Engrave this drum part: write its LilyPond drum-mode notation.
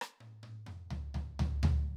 \new DrumStaff \drummode { \time 4/4 \tempo 4 = 63 ss16 tommh16 tommh16 toml16 tomfh16 tomfh16 tomfh16 tomfh16 r4 r4 | }